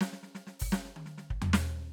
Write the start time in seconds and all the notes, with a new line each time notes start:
0.01 snare
0.13 snare
0.23 snare
0.35 snare
0.47 snare
0.60 open hi-hat, kick
0.72 snare, hi-hat pedal
0.85 snare
0.97 closed hi-hat, high tom
1.06 snare
1.18 snare
1.31 kick
1.42 floor tom
1.54 snare